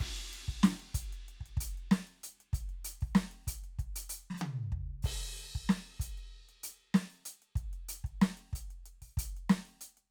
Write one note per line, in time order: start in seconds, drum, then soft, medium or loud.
0.01 kick medium
0.01 ride loud
0.18 open hi-hat soft
0.34 closed hi-hat medium
0.49 kick soft
0.49 closed hi-hat soft
0.64 snare loud
0.80 closed hi-hat soft
0.95 closed hi-hat loud
0.95 kick medium
1.14 closed hi-hat soft
1.29 closed hi-hat soft
1.42 kick soft
1.47 open hi-hat soft
1.58 closed hi-hat loud
1.58 kick medium
1.78 closed hi-hat soft
1.92 snare loud
2.08 closed hi-hat soft
2.24 closed hi-hat loud
2.41 closed hi-hat soft
2.54 closed hi-hat medium
2.54 kick medium
2.70 open hi-hat soft
2.86 closed hi-hat loud
3.02 kick soft
3.02 open hi-hat soft
3.16 snare loud
3.32 closed hi-hat soft
3.48 closed hi-hat loud
3.48 kick soft
3.65 closed hi-hat soft
3.80 kick soft
3.80 closed hi-hat medium
3.97 closed hi-hat loud
4.10 open hi-hat loud
4.31 snare soft
4.35 snare medium
4.38 snare soft
4.38 hi-hat pedal medium
4.41 snare soft
4.41 high tom loud
4.73 kick soft
5.03 kick medium
5.03 hi-hat pedal medium
5.03 crash loud
5.40 closed hi-hat soft
5.56 kick soft
5.56 closed hi-hat soft
5.70 snare loud
5.87 closed hi-hat soft
6.01 closed hi-hat loud
6.01 kick medium
6.19 closed hi-hat soft
6.50 closed hi-hat soft
6.64 closed hi-hat loud
6.81 closed hi-hat soft
6.95 snare loud
7.11 open hi-hat soft
7.26 closed hi-hat loud
7.43 closed hi-hat soft
7.57 kick medium
7.57 closed hi-hat medium
7.74 closed hi-hat soft
7.90 closed hi-hat loud
8.05 kick soft
8.05 closed hi-hat soft
8.23 snare loud
8.38 closed hi-hat soft
8.54 closed hi-hat medium
8.54 kick soft
8.72 closed hi-hat soft
8.87 closed hi-hat medium
9.03 kick soft
9.03 open hi-hat medium
9.18 closed hi-hat loud
9.18 kick medium
9.38 closed hi-hat soft
9.51 snare loud
9.66 open hi-hat soft
9.82 closed hi-hat medium
9.98 closed hi-hat soft